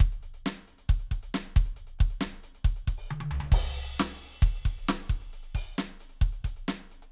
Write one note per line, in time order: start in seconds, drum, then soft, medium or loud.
0.01 closed hi-hat medium
0.01 kick loud
0.13 closed hi-hat soft
0.24 closed hi-hat medium
0.35 closed hi-hat soft
0.47 snare loud
0.57 closed hi-hat medium
0.68 closed hi-hat medium
0.79 closed hi-hat medium
0.90 closed hi-hat medium
0.90 kick loud
1.00 closed hi-hat medium
1.12 closed hi-hat medium
1.12 kick medium
1.24 closed hi-hat medium
1.35 snare loud
1.46 closed hi-hat medium
1.57 closed hi-hat medium
1.57 kick loud
1.66 closed hi-hat medium
1.77 closed hi-hat medium
1.88 closed hi-hat soft
2.00 kick loud
2.00 closed hi-hat soft
2.11 closed hi-hat medium
2.22 snare loud
2.34 closed hi-hat medium
2.44 closed hi-hat medium
2.56 closed hi-hat medium
2.65 closed hi-hat medium
2.65 kick loud
2.77 closed hi-hat medium
2.88 closed hi-hat medium
2.88 kick medium
2.98 open hi-hat medium
3.11 hi-hat pedal soft
3.11 high tom loud
3.21 high tom loud
3.32 floor tom loud
3.41 floor tom loud
3.53 kick loud
3.53 crash loud
3.76 closed hi-hat soft
3.90 closed hi-hat soft
4.00 snare loud
4.13 closed hi-hat soft
4.25 closed hi-hat medium
4.34 closed hi-hat medium
4.43 closed hi-hat medium
4.43 kick loud
4.56 closed hi-hat medium
4.66 closed hi-hat medium
4.66 kick loud
4.79 closed hi-hat medium
4.89 snare loud
5.01 closed hi-hat medium
5.10 closed hi-hat medium
5.10 kick loud
5.22 closed hi-hat soft
5.34 closed hi-hat medium
5.44 closed hi-hat medium
5.56 open hi-hat loud
5.56 kick medium
5.67 open hi-hat soft
5.76 snare loud
5.76 hi-hat pedal soft
5.89 closed hi-hat medium
6.01 closed hi-hat medium
6.10 closed hi-hat medium
6.22 closed hi-hat medium
6.22 kick loud
6.33 closed hi-hat medium
6.45 closed hi-hat medium
6.45 kick medium
6.57 closed hi-hat soft
6.69 snare loud
6.82 closed hi-hat soft
6.92 closed hi-hat medium
7.03 closed hi-hat medium